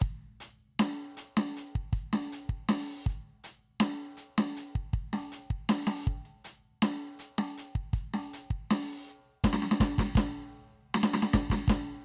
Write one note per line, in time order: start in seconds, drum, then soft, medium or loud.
0.01 closed hi-hat loud
0.01 kick medium
0.01 hi-hat pedal medium
0.21 closed hi-hat soft
0.41 closed hi-hat loud
0.80 closed hi-hat loud
0.80 snare loud
1.01 closed hi-hat soft
1.18 closed hi-hat loud
1.38 snare loud
1.58 closed hi-hat loud
1.76 kick soft
1.76 closed hi-hat soft
1.94 closed hi-hat loud
1.94 kick medium
2.14 snare loud
2.33 closed hi-hat loud
2.50 kick soft
2.50 closed hi-hat soft
2.70 open hi-hat loud
2.70 snare loud
3.07 closed hi-hat loud
3.07 kick medium
3.07 hi-hat pedal medium
3.28 closed hi-hat soft
3.45 closed hi-hat loud
3.81 closed hi-hat loud
3.81 snare loud
4.18 closed hi-hat loud
4.39 snare loud
4.57 closed hi-hat loud
4.76 kick soft
4.76 closed hi-hat soft
4.94 closed hi-hat medium
4.94 kick medium
5.14 snare medium
5.33 closed hi-hat loud
5.49 kick soft
5.49 closed hi-hat soft
5.70 open hi-hat loud
5.70 snare loud
5.88 open hi-hat loud
5.88 snare loud
6.08 kick medium
6.08 hi-hat pedal soft
6.26 closed hi-hat medium
6.45 closed hi-hat loud
6.83 closed hi-hat loud
6.83 snare loud
7.03 closed hi-hat soft
7.19 closed hi-hat loud
7.19 hi-hat pedal soft
7.39 snare loud
7.58 closed hi-hat loud
7.76 kick soft
7.76 closed hi-hat soft
7.94 closed hi-hat loud
7.94 kick medium
8.15 snare medium
8.34 closed hi-hat loud
8.51 kick soft
8.71 open hi-hat loud
8.71 snare loud
9.09 hi-hat pedal medium
9.45 kick medium
9.45 snare loud
9.54 snare loud
9.63 snare loud
9.72 snare loud
9.81 kick medium
9.81 snare loud
9.99 kick medium
9.99 snare loud
10.16 kick loud
10.16 snare loud
10.95 snare loud
11.04 snare loud
11.14 snare loud
11.23 snare loud
11.34 kick medium
11.34 snare loud
11.51 kick medium
11.51 snare loud
11.69 kick medium
11.69 snare loud